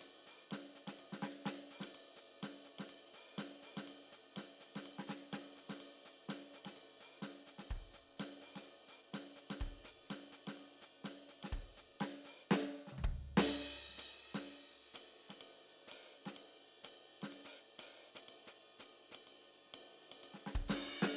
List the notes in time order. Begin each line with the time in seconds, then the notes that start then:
0.01 snare, hi-hat pedal, ride
0.26 hi-hat pedal
0.50 snare, hi-hat pedal, ride
0.75 hi-hat pedal
0.87 snare, ride
0.98 hi-hat pedal, ride
1.12 snare
1.22 snare, hi-hat pedal
1.45 snare, ride
1.70 hi-hat pedal
1.80 snare, ride
1.93 hi-hat pedal, ride
2.16 hi-hat pedal
2.39 snare, hi-hat pedal
2.43 ride
2.64 hi-hat pedal
2.78 snare, ride
2.88 hi-hat pedal, ride
3.13 hi-hat pedal
3.38 snare, ride
3.62 hi-hat pedal
3.77 snare, ride
3.86 hi-hat pedal, ride
4.12 hi-hat pedal
4.36 snare, hi-hat pedal, ride
4.60 hi-hat pedal
4.75 snare, ride
4.83 hi-hat pedal, ride
4.98 snare
5.07 snare, hi-hat pedal
5.30 snare, hi-hat pedal, ride
5.56 hi-hat pedal
5.69 snare, ride
5.79 hi-hat pedal, ride
6.05 hi-hat pedal
6.28 snare, hi-hat pedal, ride
6.53 hi-hat pedal
6.65 snare, ride
6.76 hi-hat pedal, ride
7.00 hi-hat pedal
7.22 snare, hi-hat pedal, ride
7.46 hi-hat pedal
7.58 snare, ride
7.69 kick, hi-hat pedal, ride
7.94 hi-hat pedal
8.16 snare, hi-hat pedal, ride
8.41 hi-hat pedal
8.55 snare, ride
8.65 hi-hat pedal
8.88 hi-hat pedal
9.11 snare, hi-hat pedal, ride
9.36 hi-hat pedal
9.50 snare, ride
9.59 kick, hi-hat pedal, ride
9.84 hi-hat pedal
10.06 snare, hi-hat pedal
10.10 ride
10.32 hi-hat pedal
10.47 snare, ride
10.55 hi-hat pedal, ride
10.81 hi-hat pedal
11.04 snare, hi-hat pedal, ride
11.29 hi-hat pedal
11.43 snare, ride
11.52 kick, hi-hat pedal, ride
11.77 hi-hat pedal
12.00 snare, hi-hat pedal, ride
12.25 hi-hat pedal
12.51 snare
12.87 snare
12.92 high tom
12.98 floor tom
13.04 kick
13.37 snare, crash
13.46 hi-hat pedal
13.59 snare
13.88 snare
13.94 snare, hi-hat pedal
13.99 ride
14.34 snare, ride
14.48 hi-hat pedal
14.70 hi-hat pedal
14.94 hi-hat pedal, ride
15.29 snare, ride
15.39 hi-hat pedal, ride
15.87 hi-hat pedal, ride
16.25 snare, ride
16.31 hi-hat pedal
16.36 ride
16.84 hi-hat pedal, ride
17.22 snare, ride
17.32 ride
17.45 hi-hat pedal
17.79 hi-hat pedal, ride
18.15 hi-hat pedal, ride
18.28 ride
18.47 hi-hat pedal
18.79 hi-hat pedal, ride
19.11 hi-hat pedal, ride
19.27 ride
19.65 snare
19.74 ride
20.12 ride
20.23 ride
20.34 snare
20.46 snare
20.55 kick
20.68 snare, ride
21.02 snare